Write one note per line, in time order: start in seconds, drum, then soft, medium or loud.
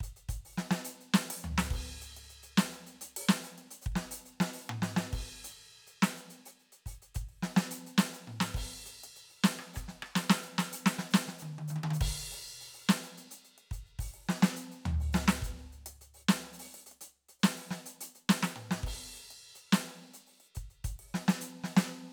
0.01 closed hi-hat medium
0.01 kick soft
0.17 closed hi-hat soft
0.29 closed hi-hat medium
0.29 kick soft
0.37 kick soft
0.46 open hi-hat medium
0.54 open hi-hat soft
0.58 snare medium
0.71 snare loud
0.85 closed hi-hat loud
1.01 closed hi-hat soft
1.14 snare loud
1.31 open hi-hat loud
1.42 floor tom medium
1.42 hi-hat pedal soft
1.58 snare loud
1.65 hi-hat pedal medium
1.71 kick soft
1.71 crash medium
1.77 kick soft
1.80 kick soft
2.02 closed hi-hat medium
2.17 closed hi-hat medium
2.25 closed hi-hat soft
2.30 closed hi-hat soft
2.44 closed hi-hat medium
2.58 snare loud
2.73 closed hi-hat soft
2.87 closed hi-hat medium
3.02 closed hi-hat loud
3.17 open hi-hat loud
3.25 hi-hat pedal soft
3.29 snare loud
3.44 open hi-hat medium
3.58 closed hi-hat medium
3.71 closed hi-hat medium
3.82 hi-hat pedal medium
3.87 kick soft
3.92 kick soft
3.92 snare medium
4.12 open hi-hat loud
4.26 open hi-hat medium
4.41 snare loud
4.54 open hi-hat medium
4.70 mid tom loud
4.83 snare medium
4.97 snare loud
5.13 kick soft
5.13 hi-hat pedal soft
5.13 crash medium
5.19 kick soft
5.45 closed hi-hat loud
5.74 closed hi-hat soft
5.88 closed hi-hat soft
6.03 snare loud
6.18 closed hi-hat medium
6.31 closed hi-hat medium
6.46 open hi-hat medium
6.46 hi-hat pedal medium
6.60 open hi-hat soft
6.73 closed hi-hat medium
6.87 open hi-hat medium
6.87 kick soft
7.03 closed hi-hat medium
7.15 closed hi-hat medium
7.15 kick soft
7.22 kick soft
7.29 open hi-hat soft
7.43 snare medium
7.56 snare loud
7.56 hi-hat pedal soft
7.72 closed hi-hat loud
7.87 closed hi-hat soft
7.87 closed hi-hat medium
7.99 snare loud
8.14 open hi-hat medium
8.24 hi-hat pedal soft
8.24 mid tom medium
8.41 snare loud
8.49 hi-hat pedal soft
8.55 kick soft
8.55 crash medium
8.61 kick soft
8.72 closed hi-hat soft
8.86 closed hi-hat medium
9.04 closed hi-hat medium
9.17 closed hi-hat medium
9.30 open hi-hat soft
9.44 snare loud
9.60 cross-stick medium
9.62 cross-stick soft
9.74 open hi-hat medium
9.74 kick soft
9.74 cross-stick medium
9.74 hi-hat pedal medium
9.89 snare soft
10.03 cross-stick medium
10.16 snare loud
10.20 hi-hat pedal soft
10.30 snare loud
10.44 open hi-hat medium
10.59 snare loud
10.73 closed hi-hat loud
10.87 snare loud
10.99 snare medium
11.11 snare loud
11.11 hi-hat pedal medium
11.29 snare medium
11.39 hi-hat pedal medium
11.39 high tom medium
11.59 high tom medium
11.69 hi-hat pedal medium
11.69 high tom medium
11.77 high tom medium
11.84 high tom loud
11.91 hi-hat pedal medium
11.91 high tom medium
12.01 kick medium
12.01 crash loud
12.32 open hi-hat medium
12.48 open hi-hat soft
12.61 open hi-hat medium
12.74 open hi-hat medium
12.89 snare loud
13.04 closed hi-hat medium
13.18 closed hi-hat medium
13.32 closed hi-hat medium
13.45 closed hi-hat soft
13.58 closed hi-hat soft
13.72 closed hi-hat medium
13.72 kick soft
13.86 open hi-hat soft
14.00 open hi-hat medium
14.00 kick soft
14.15 open hi-hat soft
14.27 snare medium
14.27 hi-hat pedal soft
14.43 snare loud
14.57 closed hi-hat medium
14.72 closed hi-hat soft
14.86 floor tom loud
15.01 open hi-hat medium
15.13 snare loud
15.13 hi-hat pedal medium
15.28 snare loud
15.36 hi-hat pedal soft
15.43 closed hi-hat medium
15.43 kick soft
15.48 kick soft
15.59 closed hi-hat soft
15.73 closed hi-hat soft
15.87 closed hi-hat loud
16.02 closed hi-hat medium
16.15 open hi-hat medium
16.22 hi-hat pedal soft
16.29 snare loud
16.54 hi-hat pedal medium
16.60 open hi-hat loud
16.75 open hi-hat medium
16.87 closed hi-hat medium
16.92 closed hi-hat soft
17.02 closed hi-hat loud
17.29 closed hi-hat medium
17.40 hi-hat pedal soft
17.44 snare loud
17.58 open hi-hat medium
17.71 snare medium
17.87 open hi-hat loud
18.01 closed hi-hat loud
18.16 closed hi-hat soft
18.30 snare loud
18.43 snare loud
18.43 hi-hat pedal medium
18.57 mid tom medium
18.72 snare medium
18.79 hi-hat pedal soft
18.84 kick soft
18.84 crash medium
18.90 kick soft
19.03 closed hi-hat soft
19.15 closed hi-hat medium
19.31 closed hi-hat medium
19.44 closed hi-hat soft
19.56 closed hi-hat medium
19.73 snare loud
19.88 open hi-hat soft
19.99 closed hi-hat soft
20.14 open hi-hat medium
20.27 open hi-hat soft
20.41 open hi-hat soft
20.56 closed hi-hat medium
20.56 kick soft
20.71 closed hi-hat soft
20.85 open hi-hat medium
20.85 kick soft
21.00 open hi-hat medium
21.15 snare medium
21.29 snare loud
21.42 closed hi-hat loud
21.64 snare medium
21.77 snare loud
21.87 hi-hat pedal soft